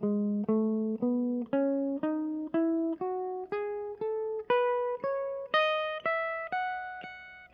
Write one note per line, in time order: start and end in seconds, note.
0.04 0.47 G#3
0.49 0.99 A3
1.03 1.46 B3
1.53 2.01 C#4
2.03 2.50 D#4
2.54 2.96 E4
3.01 3.47 F#4
3.52 3.97 G#4
4.02 4.43 A4
4.50 4.98 B4
5.04 5.49 C#5
5.54 6.01 D#5
6.06 6.49 E5
6.53 7.48 F#5